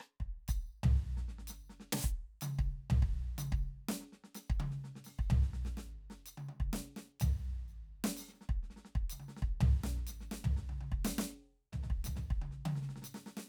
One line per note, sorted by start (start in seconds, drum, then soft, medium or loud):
0.01 cross-stick medium
0.21 kick soft
0.49 kick medium
0.49 hi-hat pedal medium
0.84 floor tom loud
0.96 snare soft
1.18 snare soft
1.29 snare soft
1.39 snare soft
1.48 snare soft
1.48 hi-hat pedal medium
1.70 snare soft
1.81 snare soft
1.93 snare loud
2.05 kick medium
2.42 hi-hat pedal medium
2.42 high tom loud
2.60 kick medium
2.91 floor tom loud
3.03 kick medium
3.39 hi-hat pedal medium
3.39 high tom loud
3.53 kick medium
3.89 snare loud
4.01 snare soft
4.13 snare soft
4.25 snare soft
4.36 snare medium
4.36 hi-hat pedal medium
4.50 kick medium
4.61 high tom loud
4.72 snare soft
4.85 snare soft
4.96 snare soft
5.05 snare soft
5.05 hi-hat pedal soft
5.20 kick soft
5.31 floor tom loud
5.43 snare soft
5.54 snare soft
5.66 snare medium
5.78 snare medium
6.11 snare soft
6.27 hi-hat pedal medium
6.38 high tom medium
6.49 high tom medium
6.61 kick soft
6.74 snare medium
6.97 snare medium
7.21 floor tom loud
7.21 hi-hat pedal medium
7.69 hi-hat pedal soft
8.05 snare loud
8.18 snare soft
8.18 hi-hat pedal medium
8.29 snare soft
8.34 snare soft
8.42 snare soft
8.50 kick medium
8.64 snare soft
8.71 snare soft
8.77 snare soft
8.86 snare soft
8.96 kick medium
9.11 hi-hat pedal medium
9.11 high tom soft
9.21 high tom medium
9.29 snare soft
9.37 snare soft
9.43 kick medium
9.61 floor tom loud
9.84 snare medium
9.98 snare soft
10.08 snare soft
10.08 hi-hat pedal medium
10.21 snare soft
10.32 snare medium
10.45 floor tom loud
10.57 snare soft
10.70 high tom medium
10.81 high tom medium
10.93 kick soft
11.05 snare loud
11.05 hi-hat pedal medium
11.19 snare loud
11.73 snare soft
11.73 floor tom medium
11.84 snare soft
11.84 floor tom soft
11.91 kick soft
12.05 snare soft
12.05 floor tom medium
12.05 hi-hat pedal medium
12.17 snare soft
12.17 floor tom medium
12.31 kick medium
12.42 high tom medium
12.52 snare soft
12.66 high tom loud
12.76 snare soft
12.83 snare soft
12.90 snare soft
12.97 snare soft
13.03 snare soft
13.03 hi-hat pedal medium
13.15 snare medium
13.27 snare medium
13.38 snare medium